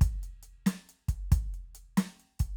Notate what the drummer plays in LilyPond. \new DrumStaff \drummode { \time 4/4 \tempo 4 = 92 \tuplet 3/2 { <bd hh>8 hh8 hh8 <sn hh>8 hh8 <bd hh>8 <bd hh>8 hh8 hh8 <sn hh>8 hh8 <hh bd>8 } | }